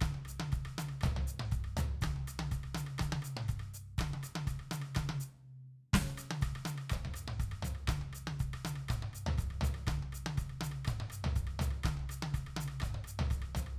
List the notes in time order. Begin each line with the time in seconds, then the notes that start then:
0.01 kick, cross-stick, hi-hat pedal, high tom
0.15 high tom
0.17 high tom
0.25 cross-stick, hi-hat pedal
0.40 high tom
0.52 kick, cross-stick, hi-hat pedal
0.65 cross-stick
0.78 hi-hat pedal, high tom
0.89 cross-stick
1.01 kick, cross-stick, floor tom, hi-hat pedal
1.17 floor tom
1.27 cross-stick, hi-hat pedal
1.40 mid tom
1.52 kick, cross-stick, hi-hat pedal
1.64 cross-stick
1.77 floor tom, hi-hat pedal
2.01 kick, cross-stick, hi-hat pedal, high tom
2.12 high tom
2.16 high tom
2.20 high tom
2.28 cross-stick, hi-hat pedal
2.39 high tom
2.52 kick, cross-stick, hi-hat pedal
2.64 cross-stick
2.75 hi-hat pedal, high tom
2.87 cross-stick
2.99 kick, cross-stick, hi-hat pedal, high tom
3.13 high tom
3.22 cross-stick, hi-hat pedal
3.37 mid tom
3.48 kick, cross-stick, hi-hat pedal
3.60 cross-stick
3.74 hi-hat pedal
3.98 kick, cross-stick, hi-hat pedal, high tom
4.14 high tom
4.18 high tom
4.23 cross-stick, hi-hat pedal
4.36 high tom
4.47 kick, cross-stick, hi-hat pedal
4.60 cross-stick
4.71 hi-hat pedal, high tom
4.82 cross-stick
4.95 kick, cross-stick, hi-hat pedal, high tom
5.09 high tom
5.20 hi-hat pedal
5.94 kick, snare, hi-hat pedal, high tom
6.10 high tom
6.18 cross-stick, hi-hat pedal
6.31 high tom
6.42 kick, cross-stick, hi-hat pedal
6.56 cross-stick
6.66 hi-hat pedal, high tom
6.78 cross-stick
6.90 kick, cross-stick, hi-hat pedal, floor tom
7.05 floor tom
7.14 cross-stick, hi-hat pedal
7.28 mid tom
7.40 kick, cross-stick, hi-hat pedal
7.52 cross-stick
7.63 floor tom, hi-hat pedal
7.75 cross-stick
7.88 kick, cross-stick, hi-hat pedal, high tom
8.02 high tom
8.13 cross-stick, hi-hat pedal
8.27 high tom
8.40 kick, cross-stick, hi-hat pedal
8.54 cross-stick
8.65 hi-hat pedal, high tom
8.76 cross-stick
8.89 kick, cross-stick, hi-hat pedal, mid tom
9.03 mid tom
9.13 cross-stick, hi-hat pedal
9.27 floor tom
9.38 kick, cross-stick, hi-hat pedal
9.51 cross-stick
9.61 floor tom, hi-hat pedal
9.74 cross-stick
9.87 kick, cross-stick, hi-hat pedal, high tom
10.03 high tom
10.13 cross-stick, hi-hat pedal
10.26 high tom
10.38 kick, cross-stick, hi-hat pedal
10.50 cross-stick
10.61 hi-hat pedal, high tom
10.72 cross-stick
10.85 kick, cross-stick, hi-hat pedal, mid tom
11.00 mid tom
11.10 cross-stick, hi-hat pedal
11.24 floor tom
11.36 kick, cross-stick, hi-hat pedal
11.47 cross-stick
11.60 floor tom, hi-hat pedal
11.71 cross-stick
11.84 kick, cross-stick, hi-hat pedal, high tom
11.97 high tom
12.00 high tom
12.02 high tom
12.10 cross-stick, hi-hat pedal
12.23 high tom
12.34 kick, cross-stick, hi-hat pedal
12.47 cross-stick
12.57 hi-hat pedal, high tom
12.68 cross-stick
12.80 kick, cross-stick, hi-hat pedal, mid tom
12.95 mid tom
13.05 cross-stick, hi-hat pedal
13.19 floor tom
13.31 kick, cross-stick, hi-hat pedal
13.42 cross-stick
13.55 floor tom, hi-hat pedal
13.67 cross-stick